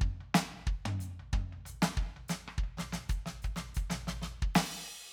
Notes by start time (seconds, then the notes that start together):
0.01 kick, floor tom
0.20 floor tom
0.34 snare, hi-hat pedal
0.52 floor tom
0.67 kick, floor tom
0.85 high tom
0.99 floor tom, hi-hat pedal
1.19 floor tom
1.33 kick, high tom
1.52 floor tom
1.65 floor tom, hi-hat pedal
1.82 snare
1.97 kick, floor tom
2.16 floor tom
2.28 snare, hi-hat pedal
2.48 cross-stick
2.58 kick
2.63 floor tom
2.77 snare, floor tom
2.92 snare, floor tom
3.09 kick, hi-hat pedal
3.26 snare, floor tom
3.42 kick, hi-hat pedal
3.56 snare, floor tom
3.74 kick, hi-hat pedal
3.90 snare, floor tom
4.07 snare, floor tom
4.14 kick
4.22 snare, floor tom
4.42 kick
4.55 snare, crash